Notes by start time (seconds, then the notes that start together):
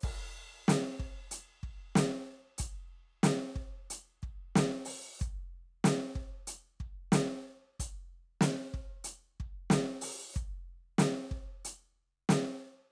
0.01 kick, hi-hat pedal, crash
0.68 closed hi-hat, snare
1.00 kick
1.32 closed hi-hat
1.63 kick, closed hi-hat
1.96 closed hi-hat, snare
2.24 closed hi-hat
2.58 closed hi-hat, kick
2.88 closed hi-hat
3.24 closed hi-hat, snare
3.56 kick, closed hi-hat
3.91 closed hi-hat
4.23 kick, closed hi-hat
4.56 closed hi-hat, snare
4.85 open hi-hat, snare
5.19 closed hi-hat, kick, hi-hat pedal
5.85 closed hi-hat, snare
6.16 kick, closed hi-hat
6.48 closed hi-hat
6.80 kick, closed hi-hat
7.12 closed hi-hat, snare
7.80 closed hi-hat, kick
8.41 closed hi-hat, snare
8.74 kick
9.05 closed hi-hat
9.40 kick
9.70 closed hi-hat, snare
10.02 open hi-hat, snare
10.34 closed hi-hat, kick, hi-hat pedal
10.99 closed hi-hat, snare
11.31 kick
11.65 closed hi-hat
12.29 closed hi-hat, snare